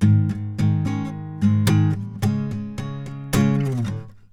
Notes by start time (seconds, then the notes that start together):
0.03 G#2 D#3 G#3
0.31 G#2 D#3 G#3
0.60 G#2 D#3 G#3
0.87 D#3 G#3 C#4
1.09 D#3
1.43 G#2 D#3 G#3
1.69 G#2 D#3 G#3
2.24 C#3 G#3 C#4
2.53 C#3 G#3 C#4
2.80 C#3 G#3 C#4
3.08 C#3 G#3
3.34 C#3 G#3 C#4 F4
3.85 A2